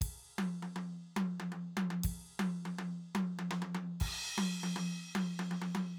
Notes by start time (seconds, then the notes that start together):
0.01 kick, ride
0.38 high tom
0.62 high tom
0.76 high tom
1.16 high tom
1.40 high tom
1.52 high tom
1.77 high tom
1.90 high tom
2.03 kick, ride
2.39 high tom
2.65 high tom
2.78 high tom
3.15 high tom
3.39 high tom
3.51 high tom
3.62 high tom
3.74 high tom
4.00 kick, ride
4.38 high tom
4.63 high tom
4.76 high tom
5.15 high tom
5.39 high tom
5.51 high tom
5.62 open hi-hat, high tom
5.75 high tom